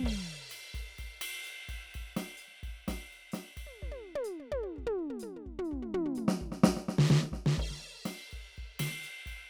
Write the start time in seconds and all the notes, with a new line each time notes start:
0.01 kick, hi-hat pedal
0.06 crash
0.51 hi-hat pedal, ride
0.75 kick, ride
0.80 kick
0.96 hi-hat pedal, ride
1.00 kick
1.05 kick
1.22 ride bell
1.44 hi-hat pedal, ride
1.70 kick, ride
1.75 kick
1.91 hi-hat pedal
1.95 kick, ride
2.01 kick
2.18 snare, ride
2.38 hi-hat pedal
2.43 ride
2.49 snare
2.64 kick, ride
2.69 kick
2.89 kick, snare, ride
2.94 kick
3.13 ride
3.33 snare, hi-hat pedal, ride
3.58 kick, ride
3.67 high tom
3.83 kick, high tom
3.89 kick, high tom
4.07 high tom
4.16 high tom
4.25 hi-hat pedal
4.41 high tom
4.52 kick, high tom
4.64 high tom
4.76 kick, mid tom
4.84 kick, mid tom
4.99 mid tom
5.11 mid tom
5.21 hi-hat pedal, mid tom
5.37 mid tom
5.47 kick
5.59 floor tom
5.66 hi-hat pedal
5.72 kick, floor tom
5.79 kick
5.83 floor tom
5.95 floor tom
6.06 floor tom
6.16 floor tom, hi-hat pedal
6.29 snare
6.41 kick, floor tom
6.47 kick
6.53 snare
6.65 kick, snare
6.73 kick
6.78 snare
6.90 snare
7.00 snare
7.08 snare, hi-hat pedal
7.24 snare
7.33 kick, snare
7.38 kick
7.47 snare
7.55 hi-hat pedal
7.59 kick, crash
7.65 kick
7.72 snare
8.06 snare, hi-hat pedal, ride
8.32 kick, ride
8.54 hi-hat pedal
8.58 kick, ride
8.64 kick
8.80 snare, ride
9.04 hi-hat pedal, ride
9.27 kick, ride
9.32 kick